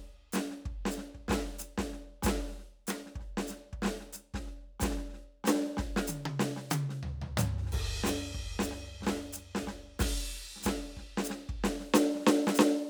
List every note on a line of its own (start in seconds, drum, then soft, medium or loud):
0.02 snare soft
0.33 snare medium
0.33 hi-hat pedal loud
0.36 snare medium
0.51 snare soft
0.66 kick soft
0.66 snare soft
0.86 snare loud
0.91 hi-hat pedal medium
0.98 snare soft
1.15 kick soft
1.28 kick medium
1.28 snare medium
1.31 snare loud
1.37 snare soft
1.41 snare soft
1.45 snare soft
1.49 snare soft
1.54 snare soft
1.59 snare soft
1.59 hi-hat pedal loud
1.78 kick soft
1.78 snare loud
1.93 snare soft
2.23 kick medium
2.23 snare medium
2.23 hi-hat pedal loud
2.27 snare loud
2.35 snare soft
2.40 snare soft
2.44 snare soft
2.48 snare soft
2.51 snare soft
2.55 snare soft
2.58 snare soft
2.87 cross-stick medium
2.87 snare medium
2.87 hi-hat pedal loud
2.97 snare soft
3.06 snare soft
3.16 kick soft
3.20 snare soft
3.37 snare medium
3.48 snare soft
3.48 hi-hat pedal medium
3.73 kick soft
3.82 snare medium
3.85 snare loud
4.00 snare soft
4.13 snare soft
4.13 hi-hat pedal loud
4.34 kick soft
4.34 snare medium
4.46 snare soft
4.80 kick medium
4.80 snare medium
4.80 hi-hat pedal loud
4.83 snare loud
4.90 snare soft
4.98 snare soft
5.04 snare soft
5.09 snare soft
5.13 kick soft
5.13 snare soft
5.44 snare medium
5.44 hi-hat pedal loud
5.48 snare loud
5.55 snare soft
5.61 snare soft
5.66 snare soft
5.71 snare soft
5.77 kick medium
5.77 snare medium
5.97 snare loud
6.07 hi-hat pedal loud
6.07 high tom medium
6.26 high tom medium
6.40 snare loud
6.57 snare soft
6.71 hi-hat pedal loud
6.71 high tom loud
6.90 snare soft
7.03 floor tom medium
7.22 floor tom medium
7.38 hi-hat pedal loud
7.38 floor tom loud
7.58 snare soft
7.62 kick soft
7.62 snare soft
7.66 snare soft
7.69 snare soft
7.69 ride loud
7.74 kick medium
8.04 snare loud
8.04 hi-hat pedal loud
8.07 snare loud
8.13 snare soft
8.21 snare soft
8.23 snare soft
8.35 kick soft
8.35 snare soft
8.59 snare loud
8.59 hi-hat pedal loud
8.72 snare soft
9.01 kick soft
9.01 snare medium
9.07 snare loud
9.11 kick soft
9.11 snare soft
9.17 snare soft
9.23 snare soft
9.33 snare soft
9.33 hi-hat pedal loud
9.55 snare medium
9.62 kick soft
9.68 snare medium
10.00 kick medium
10.00 snare medium
10.00 hi-hat pedal loud
10.00 crash loud
10.56 snare soft
10.60 snare soft
10.62 snare soft
10.62 hi-hat pedal loud
10.65 kick soft
10.65 snare soft
10.66 snare loud
10.87 snare soft
10.97 kick soft
10.97 snare soft
11.18 snare loud
11.24 hi-hat pedal loud
11.30 snare medium
11.49 kick soft
11.64 snare loud
11.80 snare soft
11.94 snare loud
11.94 hi-hat pedal loud
12.15 snare soft
12.19 snare soft
12.22 snare soft
12.25 snare soft
12.27 snare loud
12.47 snare loud
12.55 hi-hat pedal loud
12.59 snare loud